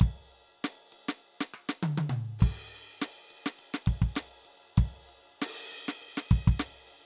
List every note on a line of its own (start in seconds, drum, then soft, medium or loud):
0.00 kick loud
0.00 ride loud
0.32 ride soft
0.64 snare loud
0.64 ride loud
0.92 ride medium
1.08 snare loud
1.41 snare loud
1.54 cross-stick medium
1.69 snare loud
1.83 high tom loud
1.98 high tom loud
2.10 mid tom loud
2.39 kick loud
2.39 crash medium
2.39 ride medium
2.68 ride soft
3.02 snare loud
3.02 ride loud
3.31 ride medium
3.46 snare loud
3.59 ride medium
3.74 snare loud
3.86 kick loud
3.86 ride loud
4.02 kick loud
4.16 snare loud
4.16 ride loud
4.45 ride medium
4.77 kick loud
4.77 ride loud
5.09 ride medium
5.42 snare loud
5.42 ride loud
5.72 ride medium
5.88 snare loud
6.02 ride medium
6.17 snare loud
6.31 kick loud
6.31 ride loud
6.47 kick loud
6.59 snare loud
6.59 ride loud
6.88 ride medium